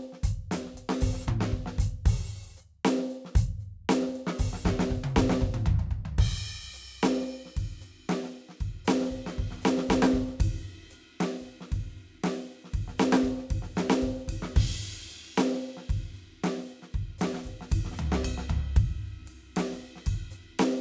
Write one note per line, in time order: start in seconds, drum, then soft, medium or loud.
0.13 snare soft
0.24 closed hi-hat loud
0.24 kick loud
0.52 closed hi-hat loud
0.52 snare loud
0.66 snare soft
0.75 kick soft
0.75 closed hi-hat medium
0.90 snare medium
1.01 open hi-hat loud
1.01 kick loud
1.13 snare soft
1.19 snare soft
1.23 snare soft
1.23 hi-hat pedal medium
1.28 kick medium
1.28 mid tom loud
1.41 snare loud
1.52 kick medium
1.52 snare soft
1.67 snare medium
1.79 closed hi-hat loud
1.79 kick loud
2.06 open hi-hat loud
2.06 kick loud
2.57 hi-hat pedal medium
2.85 closed hi-hat loud
2.85 snare loud
2.99 snare soft
3.10 closed hi-hat soft
3.25 snare medium
3.36 closed hi-hat loud
3.36 kick loud
3.60 hi-hat pedal soft
3.90 closed hi-hat loud
3.90 snare loud
4.02 snare soft
4.05 kick soft
4.05 snare soft
4.16 closed hi-hat soft
4.27 snare loud
4.39 open hi-hat loud
4.39 kick medium
4.54 snare medium
4.65 kick medium
4.65 snare loud
4.65 hi-hat pedal medium
4.80 snare loud
4.89 kick medium
4.89 hi-hat pedal soft
4.89 high tom medium
5.04 high tom loud
5.17 kick medium
5.17 snare loud
5.30 snare loud
5.42 kick medium
5.42 mid tom loud
5.55 mid tom loud
5.67 kick loud
5.67 floor tom loud
5.80 floor tom medium
5.91 kick medium
5.91 floor tom medium
6.06 floor tom medium
6.15 kick soft
6.19 kick loud
6.19 crash loud
6.74 hi-hat pedal medium
6.74 ride soft
7.03 snare loud
7.03 ride medium
7.21 snare soft
7.29 hi-hat pedal soft
7.29 ride soft
7.46 snare soft
7.57 kick medium
7.57 ride medium
7.81 hi-hat pedal medium
7.81 ride soft
8.10 snare loud
8.10 ride medium
8.24 snare soft
8.35 ride soft
8.49 snare soft
8.61 kick medium
8.61 ride bell soft
8.85 snare loud
8.85 hi-hat pedal medium
8.85 ride loud
9.01 snare medium
9.04 snare medium
9.09 kick soft
9.09 hi-hat pedal soft
9.13 ride soft
9.27 snare medium
9.39 kick medium
9.39 ride soft
9.51 snare soft
9.57 snare soft
9.61 snare soft
9.61 hi-hat pedal medium
9.66 snare loud
9.78 snare medium
9.87 kick medium
9.87 snare loud
9.87 hi-hat pedal soft
10.03 snare loud
10.14 kick medium
10.14 snare soft
10.28 snare soft
10.41 kick loud
10.41 hi-hat pedal soft
10.41 ride loud
10.91 hi-hat pedal medium
10.91 ride medium
11.21 snare loud
11.21 ride loud
11.42 kick soft
11.42 hi-hat pedal soft
11.47 ride soft
11.61 snare medium
11.72 kick medium
11.72 ride medium
11.97 hi-hat pedal soft
11.97 ride soft
12.24 snare loud
12.24 ride loud
12.49 ride soft
12.65 snare soft
12.74 kick medium
12.74 ride medium
12.88 snare soft
12.99 snare loud
12.99 hi-hat pedal medium
13.13 snare loud
13.24 kick soft
13.24 ride bell soft
13.38 snare soft
13.51 kick medium
13.51 ride medium
13.63 snare soft
13.76 snare loud
13.76 hi-hat pedal soft
13.90 snare loud
14.03 kick medium
14.03 ride medium
14.17 snare soft
14.28 kick medium
14.28 ride loud
14.43 snare medium
14.54 kick loud
14.54 hi-hat pedal soft
14.54 ride loud
15.08 hi-hat pedal soft
15.38 snare loud
15.38 ride loud
15.54 snare soft
15.77 snare soft
15.90 kick medium
15.90 ride medium
16.14 hi-hat pedal soft
16.14 ride soft
16.44 snare loud
16.44 ride loud
16.58 snare soft
16.67 hi-hat pedal soft
16.67 ride soft
16.83 snare soft
16.95 kick medium
16.95 ride bell soft
17.19 snare loud
17.19 hi-hat pedal medium
17.19 ride loud
17.34 snare medium
17.37 snare medium
17.43 kick soft
17.43 snare soft
17.43 hi-hat pedal soft
17.48 ride medium
17.62 snare medium
17.69 kick loud
17.69 hi-hat pedal soft
17.69 ride loud
17.85 snare medium
17.92 snare soft
17.97 floor tom loud
17.97 hi-hat pedal medium
18.12 snare loud
18.24 kick medium
18.24 ride bell loud
18.38 snare medium
18.47 kick medium
18.47 floor tom loud
18.47 hi-hat pedal soft
18.75 kick loud
18.75 hi-hat pedal soft
18.75 ride medium
19.26 hi-hat pedal soft
19.26 ride medium
19.57 snare loud
19.57 ride loud
19.73 kick soft
19.73 snare soft
19.79 hi-hat pedal soft
19.79 ride soft
19.96 snare soft
20.07 kick medium
20.07 ride bell medium
20.31 hi-hat pedal medium
20.31 ride soft
20.60 snare loud
20.60 ride loud